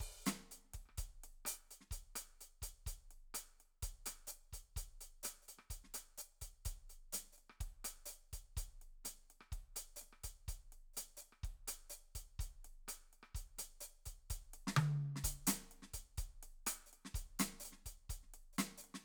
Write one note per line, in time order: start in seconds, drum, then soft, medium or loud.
0.01 open hi-hat medium
0.01 kick soft
0.26 closed hi-hat medium
0.26 snare medium
0.51 closed hi-hat soft
0.74 kick soft
0.74 closed hi-hat soft
0.86 cross-stick soft
0.89 cross-stick soft
0.98 closed hi-hat medium
0.98 kick soft
1.24 closed hi-hat soft
1.45 open hi-hat medium
1.45 cross-stick soft
1.45 hi-hat pedal medium
1.71 closed hi-hat soft
1.80 snare soft
1.91 closed hi-hat medium
1.91 kick soft
2.15 closed hi-hat medium
2.15 cross-stick soft
2.41 closed hi-hat soft
2.62 closed hi-hat medium
2.62 kick soft
2.86 closed hi-hat medium
2.86 kick soft
3.11 closed hi-hat soft
3.34 closed hi-hat medium
3.34 cross-stick soft
3.34 snare soft
3.60 closed hi-hat soft
3.82 closed hi-hat medium
3.82 kick soft
4.06 closed hi-hat medium
4.06 cross-stick soft
4.06 snare soft
4.27 hi-hat pedal medium
4.31 closed hi-hat soft
4.52 closed hi-hat soft
4.52 kick soft
4.76 closed hi-hat medium
4.76 kick soft
5.01 closed hi-hat soft
5.23 closed hi-hat medium
5.23 cross-stick soft
5.23 snare soft
5.23 hi-hat pedal medium
5.42 hi-hat pedal soft
5.48 closed hi-hat soft
5.57 cross-stick soft
5.57 snare soft
5.70 closed hi-hat medium
5.70 kick soft
5.84 snare soft
5.94 closed hi-hat medium
5.94 cross-stick soft
6.18 hi-hat pedal medium
6.41 closed hi-hat soft
6.41 kick soft
6.65 closed hi-hat medium
6.65 kick soft
6.89 closed hi-hat soft
7.12 closed hi-hat medium
7.12 snare soft
7.12 hi-hat pedal medium
7.32 hi-hat pedal soft
7.38 closed hi-hat soft
7.49 cross-stick soft
7.49 snare soft
7.60 kick soft
7.60 closed hi-hat soft
7.84 closed hi-hat medium
7.84 cross-stick soft
8.05 closed hi-hat soft
8.05 hi-hat pedal medium
8.33 closed hi-hat medium
8.33 kick soft
8.57 closed hi-hat medium
8.57 kick soft
8.81 closed hi-hat soft
9.04 closed hi-hat medium
9.04 snare soft
9.30 closed hi-hat soft
9.40 cross-stick soft
9.40 snare soft
9.52 kick soft
9.52 closed hi-hat soft
9.76 closed hi-hat medium
9.76 cross-stick soft
9.96 hi-hat pedal medium
10.01 snare soft
10.01 closed hi-hat soft
10.13 cross-stick soft
10.24 closed hi-hat medium
10.24 kick soft
10.48 closed hi-hat medium
10.48 kick soft
10.72 closed hi-hat soft
10.93 closed hi-hat medium
10.93 snare soft
10.93 hi-hat pedal soft
11.17 hi-hat pedal medium
11.22 closed hi-hat soft
11.32 cross-stick soft
11.43 kick soft
11.43 closed hi-hat soft
11.67 closed hi-hat medium
11.67 cross-stick soft
11.90 closed hi-hat soft
11.90 hi-hat pedal medium
12.15 closed hi-hat soft
12.15 kick soft
12.39 closed hi-hat soft
12.39 kick soft
12.64 closed hi-hat soft
12.87 closed hi-hat medium
12.87 cross-stick soft
12.87 snare soft
13.13 closed hi-hat soft
13.22 cross-stick soft
13.22 snare soft
13.35 closed hi-hat soft
13.35 kick soft
13.58 closed hi-hat medium
13.58 snare soft
13.80 closed hi-hat soft
13.80 hi-hat pedal medium
14.05 closed hi-hat soft
14.05 kick soft
14.30 closed hi-hat medium
14.30 kick soft
14.53 closed hi-hat soft
14.67 snare medium
14.76 high tom loud
15.16 snare soft
15.24 closed hi-hat loud
15.24 kick soft
15.29 kick soft
15.47 open hi-hat loud
15.47 snare medium
15.71 closed hi-hat soft
15.82 snare soft
15.93 closed hi-hat medium
15.93 kick soft
16.17 closed hi-hat medium
16.17 kick soft
16.43 closed hi-hat soft
16.66 closed hi-hat loud
16.66 cross-stick medium
16.86 hi-hat pedal soft
16.93 closed hi-hat soft
17.05 snare soft
17.14 closed hi-hat medium
17.14 kick soft
17.39 closed hi-hat loud
17.39 snare medium
17.60 hi-hat pedal medium
17.65 closed hi-hat soft
17.72 snare soft
17.86 closed hi-hat medium
17.86 kick soft
18.09 closed hi-hat medium
18.09 kick soft
18.23 snare soft
18.34 closed hi-hat soft
18.53 hi-hat pedal soft
18.58 closed hi-hat medium
18.58 snare medium
18.77 hi-hat pedal medium
18.84 closed hi-hat soft
18.94 snare soft